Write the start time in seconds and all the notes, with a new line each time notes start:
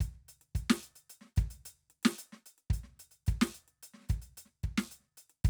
0.01 closed hi-hat, kick
0.14 snare
0.28 closed hi-hat, snare
0.42 closed hi-hat
0.55 closed hi-hat, kick
0.70 snare
0.83 closed hi-hat
0.96 closed hi-hat
1.10 closed hi-hat
1.22 snare
1.25 snare
1.37 closed hi-hat, kick
1.51 closed hi-hat, snare
1.66 closed hi-hat
1.91 closed hi-hat
2.04 snare, closed hi-hat
2.19 closed hi-hat
2.33 snare
2.35 snare
2.46 closed hi-hat
2.59 closed hi-hat
2.71 closed hi-hat, kick
2.84 snare
2.88 snare
2.92 snare
2.96 snare
3.00 closed hi-hat
3.12 closed hi-hat
3.27 closed hi-hat, kick
3.42 snare
3.55 closed hi-hat
3.68 closed hi-hat
3.83 closed hi-hat
3.94 snare
3.98 snare
4.01 snare
4.03 snare
4.07 closed hi-hat, kick, snare
4.22 closed hi-hat
4.38 closed hi-hat
4.46 snare
4.64 kick, closed hi-hat
4.78 snare, closed hi-hat
4.92 closed hi-hat
5.00 snare
5.03 snare
5.18 closed hi-hat
5.30 closed hi-hat
5.45 closed hi-hat, kick